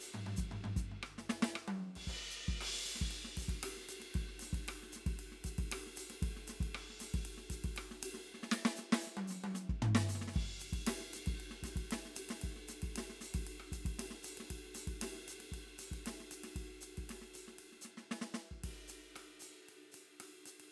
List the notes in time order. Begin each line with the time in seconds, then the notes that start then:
0.01 hi-hat pedal, ride
0.14 floor tom, high tom
0.27 floor tom, high tom
0.37 kick, hi-hat pedal
0.51 floor tom, high tom
0.64 floor tom, high tom
0.77 kick, hi-hat pedal
0.92 floor tom
1.03 cross-stick
1.18 snare
1.30 snare
1.43 snare
1.56 cross-stick
1.68 high tom
1.96 kick, ride
2.07 kick, crash
2.31 hi-hat pedal
2.48 kick
2.61 cross-stick, ride
2.75 snare
2.86 hi-hat pedal, ride
2.96 snare, ride
3.02 kick
3.11 ride
3.25 snare
3.37 kick, hi-hat pedal, ride
3.49 kick, ride
3.63 cross-stick, ride
3.77 snare
3.89 hi-hat pedal, ride
4.00 snare, ride
4.15 kick, ride
4.29 snare
4.40 snare, hi-hat pedal, ride
4.53 kick, ride
4.68 cross-stick, ride
4.83 snare
4.93 snare, hi-hat pedal, ride
5.07 kick, ride
5.19 ride
5.32 snare
5.44 kick, hi-hat pedal, ride
5.59 kick, ride
5.72 cross-stick, ride
5.87 snare
5.96 hi-hat pedal, ride
6.10 snare, ride
6.23 kick, ride
6.37 snare
6.47 snare, hi-hat pedal, ride
6.61 kick, ride
6.75 cross-stick, ride
6.90 snare
7.00 snare, hi-hat pedal, ride
7.14 kick, ride
7.25 ride
7.38 snare
7.50 kick, hi-hat pedal, ride
7.64 kick, ride
7.77 cross-stick, ride
7.91 snare
8.03 hi-hat pedal, ride
8.14 snare
8.25 hi-hat pedal
8.34 snare
8.43 snare
8.50 snare, hi-hat pedal
8.65 snare
8.76 snare, hi-hat pedal
8.93 snare
9.01 hi-hat pedal
9.07 snare
9.17 high tom
9.28 snare, hi-hat pedal
9.44 high tom
9.55 snare, hi-hat pedal
9.70 kick
9.82 floor tom, hi-hat pedal
9.95 snare
10.09 snare, hi-hat pedal
10.15 snare
10.22 snare
10.28 snare
10.32 snare, ride
10.36 kick
10.49 snare
10.60 hi-hat pedal, ride
10.73 kick, ride
10.87 snare, ride
11.01 snare
11.13 snare, hi-hat pedal, ride
11.26 kick, ride
11.40 ride
11.51 snare
11.63 kick, snare, hi-hat pedal, ride
11.76 kick, ride
11.91 snare, ride
12.05 snare
12.16 hi-hat pedal, ride
12.29 snare, ride
12.42 kick, ride
12.56 snare
12.68 snare, hi-hat pedal, ride
12.82 kick, ride
12.96 snare, ride
13.10 snare
13.21 snare, hi-hat pedal
13.34 kick, ride
13.47 ride
13.60 cross-stick
13.72 kick, hi-hat pedal, ride
13.86 kick, ride
13.99 snare, ride
14.11 snare
14.23 hi-hat pedal, ride
14.38 snare, ride
14.51 kick, ride
14.66 snare
14.75 snare, hi-hat pedal, ride
14.87 kick, ride
15.02 snare, ride
15.15 snare
15.28 hi-hat pedal, ride
15.40 snare, ride
15.52 kick, ride
15.66 snare
15.78 snare, hi-hat pedal, ride
15.92 kick, ride
16.06 snare, ride
16.20 snare
16.31 hi-hat pedal, ride
16.44 snare, ride
16.56 kick, ride
16.70 snare
16.81 hi-hat pedal, ride
16.86 snare
16.98 kick, ride
17.10 snare, ride
17.22 snare
17.34 hi-hat pedal, ride
17.48 snare
17.59 ride
17.72 snare
17.82 snare, hi-hat pedal
17.98 snare
18.11 snare
18.22 snare
18.33 snare, hi-hat pedal
18.51 kick
18.64 kick, ride, crash
18.88 hi-hat pedal, ride
19.16 cross-stick, ride
19.40 hi-hat pedal, ride
19.69 ride
19.92 hi-hat pedal, ride
20.20 cross-stick, ride
20.46 hi-hat pedal, ride
20.60 cross-stick, ride